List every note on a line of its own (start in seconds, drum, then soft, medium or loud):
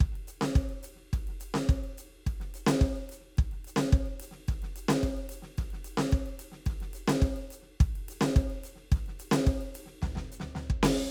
0.01 kick loud
0.01 snare soft
0.01 ride soft
0.13 snare soft
0.13 ride soft
0.28 hi-hat pedal medium
0.28 ride medium
0.42 snare medium
0.56 kick loud
0.56 ride soft
0.70 ride soft
0.83 hi-hat pedal medium
0.83 ride medium
0.96 snare soft
1.14 kick medium
1.14 snare soft
1.14 ride medium
1.28 snare soft
1.28 ride soft
1.41 hi-hat pedal medium
1.41 ride medium
1.55 snare medium
1.69 kick loud
1.69 ride soft
1.84 ride soft
1.98 hi-hat pedal medium
1.98 ride medium
2.10 snare soft
2.27 kick medium
2.27 snare soft
2.27 ride medium
2.41 snare soft
2.41 ride soft
2.55 hi-hat pedal medium
2.55 ride medium
2.67 snare loud
2.82 kick loud
2.82 ride soft
2.97 ride soft
3.10 hi-hat pedal medium
3.10 ride medium
3.21 snare soft
3.38 kick loud
3.38 snare soft
3.38 ride soft
3.52 snare soft
3.52 ride soft
3.65 hi-hat pedal medium
3.65 ride medium
3.77 snare loud
3.93 kick loud
3.93 hi-hat pedal soft
3.93 ride soft
4.07 ride soft
4.20 hi-hat pedal medium
4.20 ride medium
4.32 snare soft
4.48 kick medium
4.48 snare soft
4.48 hi-hat pedal soft
4.48 ride soft
4.63 snare soft
4.63 ride soft
4.77 hi-hat pedal medium
4.77 ride medium
4.89 snare loud
5.03 kick medium
5.03 hi-hat pedal soft
5.03 ride soft
5.17 ride soft
5.30 hi-hat pedal medium
5.30 ride medium
5.43 snare soft
5.57 kick medium
5.57 snare soft
5.57 hi-hat pedal soft
5.57 ride medium
5.71 snare soft
5.71 ride soft
5.85 hi-hat pedal medium
5.85 ride medium
5.98 snare loud
6.11 kick loud
6.11 hi-hat pedal soft
6.11 ride medium
6.23 snare soft
6.23 ride soft
6.40 hi-hat pedal medium
6.40 ride medium
6.52 snare soft
6.67 kick medium
6.67 snare soft
6.67 ride medium
6.81 snare soft
6.81 ride soft
6.94 hi-hat pedal medium
6.94 ride medium
7.08 snare loud
7.22 kick loud
7.22 ride soft
7.37 ride soft
7.51 hi-hat pedal medium
7.51 ride medium
7.63 snare soft
7.81 kick loud
7.81 snare soft
7.81 hi-hat pedal soft
7.81 ride medium
7.96 snare soft
7.96 ride soft
8.09 hi-hat pedal medium
8.09 ride medium
8.22 snare loud
8.37 kick loud
8.37 hi-hat pedal soft
8.37 ride medium
8.51 ride soft
8.64 hi-hat pedal medium
8.64 ride medium
8.76 snare soft
8.92 kick loud
8.92 snare soft
8.92 hi-hat pedal soft
8.92 ride medium
9.07 snare soft
9.07 ride soft
9.20 hi-hat pedal medium
9.20 ride medium
9.32 snare loud
9.47 kick loud
9.47 hi-hat pedal soft
9.47 ride medium
9.62 ride soft
9.75 hi-hat pedal medium
9.75 ride medium
9.86 snare soft
10.02 kick medium
10.02 snare medium
10.02 floor tom medium
10.02 hi-hat pedal soft
10.16 snare medium
10.16 floor tom medium
10.32 hi-hat pedal medium
10.41 snare medium
10.41 floor tom medium
10.56 snare medium
10.56 floor tom medium
10.70 kick loud
10.84 snare loud
10.84 ride loud
11.06 snare soft